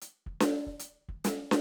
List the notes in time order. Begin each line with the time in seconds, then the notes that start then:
0.02 closed hi-hat
0.26 kick
0.41 closed hi-hat, snare
0.67 kick
0.80 closed hi-hat
1.09 kick
1.24 closed hi-hat, snare
1.51 snare